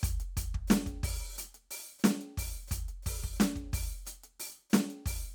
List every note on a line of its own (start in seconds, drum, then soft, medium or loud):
0.01 closed hi-hat loud
0.01 kick loud
0.01 hi-hat pedal medium
0.20 closed hi-hat medium
0.37 open hi-hat loud
0.37 kick medium
0.54 kick medium
0.68 closed hi-hat loud
0.68 snare loud
0.68 hi-hat pedal medium
0.86 kick medium
0.86 closed hi-hat medium
1.03 open hi-hat loud
1.03 kick medium
1.36 closed hi-hat loud
1.36 hi-hat pedal medium
1.54 closed hi-hat medium
1.71 open hi-hat loud
1.99 hi-hat pedal medium
2.04 closed hi-hat loud
2.04 snare loud
2.21 closed hi-hat medium
2.38 open hi-hat loud
2.38 kick medium
2.68 closed hi-hat loud
2.68 kick medium
2.68 hi-hat pedal medium
2.88 closed hi-hat medium
3.03 open hi-hat loud
3.03 kick medium
3.03 hi-hat pedal soft
3.24 kick medium
3.36 hi-hat pedal medium
3.40 closed hi-hat loud
3.40 snare loud
3.56 kick medium
3.56 closed hi-hat soft
3.72 open hi-hat loud
3.72 kick medium
3.72 hi-hat pedal soft
4.06 closed hi-hat loud
4.06 hi-hat pedal soft
4.24 closed hi-hat medium
4.40 open hi-hat loud
4.70 closed hi-hat loud
4.70 snare loud
4.70 hi-hat pedal medium
4.90 closed hi-hat medium
5.06 open hi-hat loud
5.06 kick medium